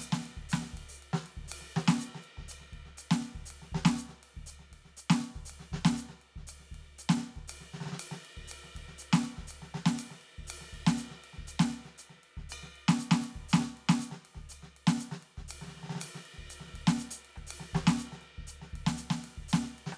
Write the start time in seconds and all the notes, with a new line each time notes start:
0.01 hi-hat pedal, ride bell
0.13 snare
0.22 hi-hat pedal
0.27 ride
0.38 kick
0.50 hi-hat pedal, ride
0.54 snare
0.63 snare
0.71 kick, hi-hat pedal
0.78 ride
0.90 open hi-hat
1.04 ride
1.14 snare
1.27 ride
1.38 kick
1.45 snare, hi-hat pedal
1.53 ride
1.62 snare
1.71 hi-hat pedal
1.77 snare
1.89 snare
2.01 hi-hat pedal
2.16 snare
2.23 hi-hat pedal, ride
2.38 kick, snare
2.43 snare
2.49 hi-hat pedal, ride bell
2.61 snare
2.66 snare
2.74 kick, ride
2.86 snare
2.98 hi-hat pedal, ride
3.12 snare
3.17 cross-stick
3.24 ride
3.36 kick, snare
3.47 hi-hat pedal
3.51 ride
3.63 snare
3.73 kick, snare
3.86 snare
3.99 hi-hat pedal, ride bell
4.09 snare
4.17 snare
4.24 ride
4.34 kick, snare
4.39 snare
4.47 hi-hat pedal, ride bell
4.60 snare
4.66 snare
4.73 kick, ride
4.86 snare
4.98 hi-hat pedal, ride
5.11 snare
5.16 cross-stick
5.20 hi-hat pedal
5.25 ride
5.36 kick, snare
5.46 hi-hat pedal
5.51 ride
5.61 snare
5.73 kick, snare
5.86 snare
5.92 snare
5.98 hi-hat pedal, ride bell
6.10 snare
6.23 ride
6.37 kick, snare
6.48 hi-hat pedal, ride
6.61 snare
6.72 kick, ride
6.82 snare
7.00 hi-hat pedal, ride
7.10 snare
7.18 snare
7.37 kick, snare
7.49 hi-hat pedal, ride
7.61 snare
7.75 snare
7.82 snare
7.87 snare
7.93 snare
8.00 hi-hat pedal, ride
8.12 snare
8.26 ride
8.38 kick, snare
8.49 hi-hat pedal, ride
8.65 snare
8.76 kick, ride
8.89 snare
8.99 hi-hat pedal
9.03 ride
9.14 snare
9.22 hi-hat pedal
9.26 ride
9.38 kick, snare
9.48 hi-hat pedal, ride
9.63 snare
9.75 snare
9.87 snare
9.93 snare
9.99 hi-hat pedal, ride
10.12 snare
10.21 snare, ride
10.34 snare
10.37 kick, snare
10.48 hi-hat pedal, ride
10.62 snare
10.74 kick, ride
10.88 snare
10.93 cross-stick
10.98 hi-hat pedal, ride
11.12 snare
11.25 ride
11.34 snare
11.39 kick
11.48 hi-hat pedal, ride bell
11.61 snare
11.66 cross-stick
11.72 hi-hat pedal, ride
11.86 snare
11.99 hi-hat pedal, ride bell
12.11 snare
12.18 snare
12.24 ride
12.38 kick, snare
12.50 hi-hat pedal, ride bell
12.64 snare
12.73 hi-hat pedal, ride
12.89 snare
12.95 cross-stick
13.01 hi-hat pedal, ride
13.12 snare
13.22 hi-hat pedal, ride
13.37 kick
13.50 hi-hat pedal
13.54 snare, ride bell
13.60 snare
13.71 hi-hat pedal
13.78 ride
13.90 snare
14.02 hi-hat pedal, ride bell
14.12 snare
14.26 ride
14.36 kick, snare
14.50 hi-hat pedal, ride bell
14.64 snare
14.78 ride
14.88 snare
15.01 hi-hat pedal, ride
15.12 snare
15.22 hi-hat pedal, ride
15.38 kick, snare
15.49 hi-hat pedal, ride
15.62 snare
15.68 snare
15.73 snare
15.78 snare
15.84 snare
15.91 snare
15.96 snare
16.01 snare, hi-hat pedal, ride
16.16 snare
16.23 hi-hat pedal, ride
16.34 snare
16.39 kick, snare
16.51 hi-hat pedal, ride
16.61 snare
16.68 snare
16.75 kick, ride
16.88 snare
17.00 hi-hat pedal, ride
17.12 closed hi-hat
17.26 ride
17.37 kick, cross-stick
17.48 hi-hat pedal, ride
17.61 snare
17.70 hi-hat pedal
17.74 kick, snare
17.88 snare
18.00 hi-hat pedal, ride bell
18.13 snare
18.22 snare, hi-hat pedal, ride
18.34 snare
18.39 kick, snare
18.48 hi-hat pedal, ride bell
18.63 snare
18.69 hi-hat pedal
18.74 kick, ride
18.80 kick
18.88 snare
18.98 hi-hat pedal, ride
19.11 snare
19.25 ride
19.39 kick
19.49 hi-hat pedal
19.54 snare, ride
19.63 snare
19.79 ride
19.87 snare
19.93 cross-stick